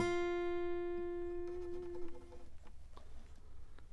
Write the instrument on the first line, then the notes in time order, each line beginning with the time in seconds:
acoustic guitar
0.00 F4